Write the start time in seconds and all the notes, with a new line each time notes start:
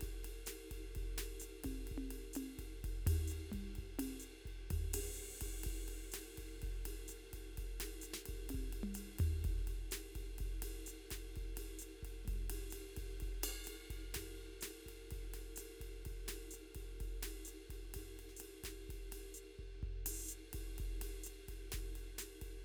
0.01 kick, snare, ride
0.08 kick
0.23 snare, ride
0.46 snare, hi-hat pedal, ride
0.71 kick, ride
0.95 kick, ride
1.02 kick
1.18 snare, ride
1.40 hi-hat pedal, ride
1.64 kick, high tom, ride
1.71 kick
1.87 ride
1.92 kick
1.97 kick, high tom
2.11 ride
2.33 hi-hat pedal, high tom, ride
2.59 kick, ride
2.84 kick, ride
2.90 kick
3.07 floor tom, ride
3.28 hi-hat pedal
3.32 ride
3.52 kick, mid tom, ride
3.60 kick
3.75 kick, ride
3.84 kick
3.99 high tom, ride
4.20 hi-hat pedal, ride
4.46 kick, ride
4.71 kick, floor tom, ride
4.94 ride, crash
5.14 hi-hat pedal
5.41 kick, ride
5.47 kick
5.64 kick, snare, ride
5.72 kick
5.88 ride
6.12 snare, hi-hat pedal, ride
6.38 kick, ride
6.62 kick, ride
6.69 kick
6.86 snare, ride
7.08 hi-hat pedal, ride
7.33 kick, ride
7.58 kick, ride
7.63 kick
7.80 snare, ride
8.02 hi-hat pedal, ride
8.14 snare
8.26 kick, ride
8.34 kick
8.49 high tom, ride
8.55 kick
8.60 kick
8.73 ride
8.83 mid tom
8.94 hi-hat pedal, ride
9.19 kick, floor tom, ride
9.25 kick
9.44 kick, ride
9.51 kick
9.58 snare
9.67 ride
9.91 snare, hi-hat pedal, ride
10.15 kick, ride
10.21 kick
10.38 kick, ride
10.46 kick
10.62 snare, ride
10.86 hi-hat pedal, ride
11.11 kick, snare, ride
11.36 kick, ride
11.42 kick
11.56 snare, ride
11.79 hi-hat pedal, ride
12.03 kick, ride
12.25 kick, mid tom, ride
12.29 mid tom
12.34 kick, mid tom
12.50 ride
12.70 hi-hat pedal, ride
12.97 kick, ride
13.03 kick
13.10 snare
13.20 kick, ride
13.27 kick
13.43 snare, ride bell
13.64 hi-hat pedal, ride
13.90 kick, ride
14.14 kick, snare, ride
14.22 kick
14.61 snare, hi-hat pedal, ride
14.86 kick, ride
15.11 kick, ride
15.17 kick
15.34 snare, ride
15.56 snare, hi-hat pedal, ride
15.81 kick, ride
16.05 kick, ride
16.12 kick
16.28 snare, ride
16.51 hi-hat pedal, ride
16.74 kick, snare, ride
17.00 kick, ride
17.06 kick
17.23 snare, ride
17.45 hi-hat pedal, ride
17.70 kick, ride
17.94 kick, snare, ride
18.19 ride
18.29 snare
18.37 hi-hat pedal, ride
18.64 kick, snare, ride
18.90 kick, ride
18.95 kick
19.12 snare, ride
19.34 hi-hat pedal
19.59 kick
19.83 kick, ride
20.06 open hi-hat, ride
20.29 hi-hat pedal
20.53 kick, ride
20.60 kick
20.78 kick, ride
20.85 kick
21.02 snare, ride
21.24 hi-hat pedal, ride
21.49 kick, ride
21.72 kick, snare, ride
21.79 kick
21.96 ride
22.18 snare, hi-hat pedal, ride
22.42 kick, ride